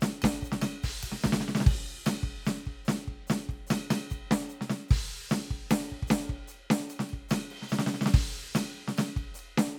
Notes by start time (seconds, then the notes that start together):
0.01 snare, hi-hat pedal, ride
0.22 kick, snare, ride bell
0.41 kick, hi-hat pedal, ride bell
0.52 snare
0.62 snare, ride bell
0.82 kick, hi-hat pedal, crash
1.03 kick, ride
1.12 snare
1.21 snare, hi-hat pedal
1.26 kick
1.32 snare
1.40 snare
1.48 snare
1.55 snare
1.60 snare
1.66 kick, crash
2.05 snare, hi-hat pedal, ride bell
2.23 kick
2.45 snare, hi-hat pedal, ride bell
2.66 kick, ride bell
2.85 snare, hi-hat pedal, ride bell
3.08 kick
3.27 snare, hi-hat pedal, ride bell
3.49 kick, ride
3.67 snare, hi-hat pedal, ride bell
3.90 snare, ride bell
4.10 kick, hi-hat pedal, ride bell
4.31 kick, snare
4.49 hi-hat pedal, ride bell
4.61 snare
4.70 snare, ride
4.88 kick, hi-hat pedal, crash
5.29 snare, hi-hat pedal, ride bell
5.51 kick, ride bell
5.70 snare, hi-hat pedal, ride
5.90 kick, ride bell
6.02 kick
6.07 snare, hi-hat pedal, ride bell
6.29 kick
6.33 ride bell
6.48 hi-hat pedal
6.52 ride bell
6.70 snare
6.89 hi-hat pedal, ride bell
6.99 snare
7.09 kick, ride bell
7.29 snare, hi-hat pedal, ride bell
7.51 ride
7.62 snare
7.69 snare, hi-hat pedal
7.79 snare
7.86 snare
7.94 snare
8.01 snare
8.06 snare
8.14 kick, crash
8.54 snare, hi-hat pedal, ride bell
8.74 ride
8.88 snare
8.97 snare, hi-hat pedal, ride bell
9.16 kick, ride
9.34 hi-hat pedal
9.39 ride bell
9.58 snare